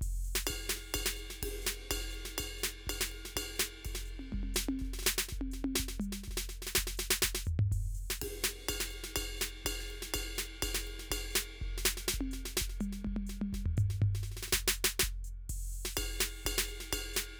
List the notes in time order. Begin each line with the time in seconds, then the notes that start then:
0.02 kick, crash
0.07 kick
0.16 kick
0.25 hi-hat pedal
0.36 snare
0.48 kick, ride bell
0.57 kick
0.70 snare, hi-hat pedal
0.77 snare
0.95 kick, ride bell
1.02 kick
1.07 snare
1.17 hi-hat pedal, ride
1.31 snare
1.43 kick, ride
1.63 hi-hat pedal
1.67 snare
1.92 kick, ride bell
1.98 kick, snare
2.11 hi-hat pedal, ride
2.26 snare
2.39 kick, ride bell
2.47 kick
2.59 hi-hat pedal
2.64 snare
2.88 kick, ride bell
2.94 kick
3.02 snare
3.07 hi-hat pedal
3.12 ride
3.26 snare
3.37 kick, ride bell
3.43 kick
3.57 snare, hi-hat pedal
3.85 kick, ride bell
3.93 kick, snare
4.06 hi-hat pedal
4.20 closed hi-hat, high tom
4.33 kick, mid tom
4.41 kick, high tom
4.55 snare, hi-hat pedal
4.69 high tom
4.80 kick, snare
4.85 snare
4.94 snare
4.99 snare
5.03 snare, hi-hat pedal
5.07 snare
5.19 snare
5.29 kick, snare
5.40 kick, high tom
5.52 snare, hi-hat pedal
5.65 high tom
5.76 snare
5.80 kick
5.87 kick, snare
6.00 hi-hat pedal, mid tom
6.13 snare
6.24 snare
6.29 kick, snare
6.38 snare
6.50 snare, hi-hat pedal
6.63 snare
6.67 snare
6.76 kick, snare
6.88 snare
6.98 snare, hi-hat pedal
7.11 snare
7.23 kick, snare
7.35 snare
7.46 floor tom, hi-hat pedal
7.60 floor tom
7.72 kick, floor tom, crash
7.96 hi-hat pedal
8.11 snare
8.22 kick, ride
8.29 kick
8.44 snare, hi-hat pedal
8.69 kick, ride bell
8.76 kick
8.81 snare
8.90 hi-hat pedal, ride
9.04 snare
9.17 kick, ride bell
9.38 hi-hat pedal
9.42 snare
9.66 kick, ride bell
9.72 kick
9.81 snare
9.87 hi-hat pedal
9.91 ride
10.03 snare
10.15 kick, ride bell
10.22 kick
10.36 snare, hi-hat pedal
10.63 kick, ride bell
10.75 snare
10.83 hi-hat pedal
10.88 ride
11.00 snare
11.11 kick, ride bell
11.17 kick
11.31 hi-hat pedal
11.36 snare
11.62 kick
11.69 kick
11.78 snare
11.85 snare, hi-hat pedal
11.98 snare
12.09 snare
12.15 kick
12.21 kick, high tom
12.32 snare, hi-hat pedal
12.46 snare
12.58 snare
12.62 kick
12.69 kick, snare
12.81 hi-hat pedal, mid tom
12.93 snare
13.05 kick, mid tom
13.14 kick, mid tom
13.27 snare, hi-hat pedal
13.42 mid tom
13.54 kick, snare
13.60 kick
13.66 floor tom
13.78 hi-hat pedal, floor tom
13.91 snare
14.03 kick, floor tom
14.16 snare
14.24 snare, hi-hat pedal
14.32 snare
14.37 snare
14.43 snare
14.48 snare
14.53 kick, snare
14.60 kick
14.68 snare
14.75 hi-hat pedal
14.85 snare
15.00 kick, snare
15.09 kick
15.25 hi-hat pedal
15.50 kick, crash
15.57 kick
15.62 kick
15.73 hi-hat pedal
15.86 snare
15.98 kick, ride bell
16.05 kick
16.20 snare, hi-hat pedal
16.46 kick, ride bell
16.52 kick
16.59 snare
16.68 hi-hat pedal, ride
16.81 snare
16.93 kick, ride bell
17.14 snare, hi-hat pedal